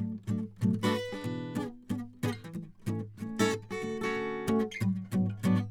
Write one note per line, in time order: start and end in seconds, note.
0.00 0.20 F#3
0.00 0.21 A3
0.00 0.19 D4
0.28 0.49 F#3
0.28 0.50 A3
0.28 0.49 D4
0.28 0.50 F#4
0.62 0.79 B2
0.62 0.83 F#3
0.62 0.78 A3
0.62 0.78 D4
0.84 1.03 A3
0.84 1.03 D4
0.84 1.02 F#4
0.84 1.58 B4
1.13 1.57 D4
1.13 1.56 G#4
1.25 1.68 B2
1.25 1.72 E3
1.25 1.54 B3
1.56 1.76 B3
1.56 1.71 D4
1.56 1.77 G#4
1.91 2.09 B3
1.91 2.04 C#4
2.24 2.33 E3
2.24 2.35 B3
2.24 2.36 C#4
2.24 2.37 G#4
2.45 2.53 E3
2.55 2.73 E3
2.87 3.05 A2
2.87 3.07 E3
2.87 3.06 A3
2.87 3.09 C#4
2.87 3.06 D#4
3.21 3.40 E3
3.21 3.40 A3
3.21 3.42 C#4
3.21 3.39 D#4
3.40 3.57 A3
3.40 3.60 C#4
3.40 3.59 E4
3.40 3.58 A4
3.71 4.04 F#4
3.71 3.99 A4
3.82 3.99 D3
3.82 4.21 A3
3.82 4.03 C#4
4.02 4.48 C#4
4.02 4.49 F#4
4.02 4.73 A4
4.16 4.63 D3
4.48 4.70 A3
4.48 4.71 C#4
4.48 4.71 F#4
4.82 5.08 F#3
5.13 5.31 G#2
5.13 5.31 F#3
5.13 5.32 B3
5.44 5.64 G#2
5.44 5.65 F#3
5.44 5.69 B3
5.44 5.66 D4
5.44 5.67 E4